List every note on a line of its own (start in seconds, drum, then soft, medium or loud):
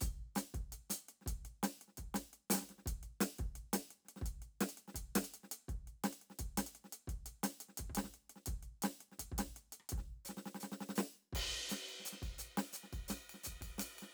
0.01 open hi-hat medium
0.01 kick medium
0.01 snare soft
0.36 snare medium
0.36 closed hi-hat medium
0.36 hi-hat pedal medium
0.54 kick soft
0.54 closed hi-hat soft
0.72 closed hi-hat medium
0.90 closed hi-hat loud
0.90 snare soft
1.09 closed hi-hat soft
1.21 snare soft
1.26 kick medium
1.26 closed hi-hat medium
1.45 closed hi-hat soft
1.63 snare medium
1.63 closed hi-hat medium
1.81 closed hi-hat soft
1.88 snare soft
1.98 kick soft
1.98 closed hi-hat medium
2.15 snare medium
2.15 closed hi-hat medium
2.33 closed hi-hat soft
2.50 closed hi-hat loud
2.50 snare medium
2.54 snare medium
2.57 snare soft
2.61 kick soft
2.61 snare soft
2.69 snare soft
2.69 closed hi-hat soft
2.78 snare soft
2.86 kick medium
2.86 snare soft
2.86 closed hi-hat medium
3.03 closed hi-hat soft
3.21 snare medium
3.21 closed hi-hat medium
3.39 kick medium
3.39 closed hi-hat soft
3.56 closed hi-hat soft
3.73 snare medium
3.73 closed hi-hat loud
3.91 closed hi-hat soft
4.05 snare soft
4.05 closed hi-hat soft
4.16 snare soft
4.22 kick medium
4.26 closed hi-hat medium
4.42 closed hi-hat soft
4.61 snare medium
4.61 closed hi-hat medium
4.69 closed hi-hat medium
4.78 closed hi-hat soft
4.88 snare soft
4.95 kick soft
4.95 closed hi-hat medium
5.16 snare medium
5.16 closed hi-hat loud
5.22 snare soft
5.22 closed hi-hat medium
5.34 closed hi-hat medium
5.44 snare soft
5.52 closed hi-hat medium
5.69 kick soft
5.69 closed hi-hat soft
5.87 closed hi-hat soft
6.04 snare medium
6.04 closed hi-hat medium
6.13 closed hi-hat soft
6.22 closed hi-hat soft
6.30 snare soft
6.39 kick soft
6.39 closed hi-hat medium
6.58 snare medium
6.58 closed hi-hat medium
6.67 closed hi-hat medium
6.75 closed hi-hat soft
6.84 snare soft
6.93 closed hi-hat medium
7.08 kick soft
7.08 closed hi-hat soft
7.26 closed hi-hat medium
7.44 snare medium
7.44 closed hi-hat medium
7.61 closed hi-hat medium
7.69 snare soft
7.78 kick soft
7.78 closed hi-hat medium
7.90 kick soft
7.95 snare medium
7.95 closed hi-hat medium
8.04 snare soft
8.14 closed hi-hat soft
8.30 closed hi-hat soft
8.36 snare soft
8.46 kick medium
8.46 closed hi-hat medium
8.63 closed hi-hat soft
8.82 snare medium
8.82 closed hi-hat medium
9.01 closed hi-hat soft
9.12 snare soft
9.19 kick soft
9.19 closed hi-hat medium
9.32 kick soft
9.38 snare medium
9.38 closed hi-hat medium
9.56 closed hi-hat soft
9.73 closed hi-hat medium
9.80 cross-stick soft
9.89 kick medium
9.89 closed hi-hat medium
9.98 snare soft
10.25 snare soft
10.25 hi-hat pedal medium
10.37 snare soft
10.46 snare soft
10.55 snare soft
10.60 snare soft
10.60 hi-hat pedal medium
10.72 snare soft
10.81 snare soft
10.89 snare soft
10.96 snare medium
10.96 hi-hat pedal medium
11.33 kick soft
11.33 ride loud
11.69 snare medium
11.69 hi-hat pedal medium
11.69 ride bell soft
11.89 ride bell soft
12.00 snare soft
12.05 hi-hat pedal medium
12.05 ride medium
12.13 snare soft
12.22 kick soft
12.22 ride bell soft
12.39 hi-hat pedal medium
12.39 ride bell soft
12.58 snare medium
12.58 ride medium
12.73 hi-hat pedal medium
12.73 ride bell soft
12.84 snare soft
12.93 kick soft
12.93 ride bell soft
13.08 snare medium
13.08 hi-hat pedal medium
13.08 ride bell medium
13.30 ride medium
13.34 snare soft
13.44 kick soft
13.44 hi-hat pedal medium
13.44 ride bell medium
13.61 kick soft
13.61 ride medium
13.78 snare soft
13.78 hi-hat pedal medium
13.78 ride loud
13.99 snare soft
13.99 ride medium